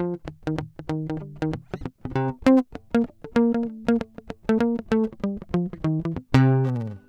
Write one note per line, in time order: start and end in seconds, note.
0.00 0.21 F3
0.49 0.56 D#3
0.60 0.74 D#3
0.91 1.11 D#3
1.11 1.18 D#3
1.19 1.30 D3
1.44 1.51 D#3
2.17 2.35 C3
2.48 2.68 C4
2.96 3.09 A#3
3.38 3.56 A#3
3.56 3.63 A#3
3.65 3.88 A3
3.90 4.02 A#3
4.03 4.10 A3
4.51 4.61 A3
4.62 4.80 A#3
4.93 5.12 A3
5.25 5.40 G3
5.56 5.71 F3
5.86 6.06 D#3
6.07 6.18 E3
6.36 6.81 C3